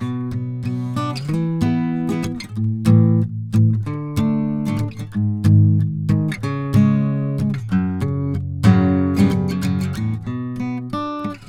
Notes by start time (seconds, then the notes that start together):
0.01 B2 B3
0.32 B2 F#3 B3
0.64 B2 F#3 B3
0.97 B3 D4
1.31 E3 A3
1.62 B3 E4
2.10 E3 B3 E4
2.24 E3 B3 E4
2.57 A2
2.86 A2 E3
3.23 A2 E3
3.54 A2 E3
3.87 D3
4.18 D3 A3 D4
4.66 D3 A3 D4
4.78 A3
5.15 G#2
5.45 G#2 D#3 G#3
5.80 G#2
6.10 D#3 G#3
6.44 C#3
6.74 C#3 G#3 C#4
7.39 C#3 G#3 C#4
7.72 F#2
8.02 C#3
8.35 F#2 C#3
8.64 F#2 C#3 F#3
9.16 C#3 F#3 G3 B3
9.21 F#2
9.32 F#2 C#3
9.49 F#2 C#3
9.64 F#2 C#3 F#3
9.80 C#3 F#3
9.85 F#2
9.95 E2 A2 D3
10.28 B2
10.61 B3
10.94 D4